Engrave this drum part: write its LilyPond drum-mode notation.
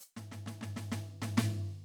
\new DrumStaff \drummode { \time 4/4 \tempo 4 = 130 \tuplet 3/2 { hhp8 <tomfh sn>8 <tomfh sn>8 <tomfh sn>8 <tomfh sn>8 <tomfh sn>8 <sn tomfh>8 r8 <tomfh sn>8 } <tomfh sn>4 | }